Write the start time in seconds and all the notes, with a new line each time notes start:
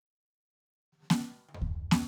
0.93 snare
0.98 snare
1.01 snare
1.03 snare
1.11 snare
1.49 high tom
1.55 floor tom
1.62 kick
1.92 snare